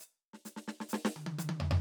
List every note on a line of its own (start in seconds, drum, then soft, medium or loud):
0.00 hi-hat pedal medium
0.33 snare soft
0.45 snare soft
0.45 hi-hat pedal medium
0.56 snare soft
0.68 snare medium
0.80 snare soft
0.89 hi-hat pedal medium
0.93 snare medium
1.05 snare medium
1.16 closed hi-hat soft
1.16 high tom medium
1.26 high tom medium
1.39 hi-hat pedal loud
1.39 high tom medium
1.49 high tom loud
1.60 floor tom loud
1.71 floor tom loud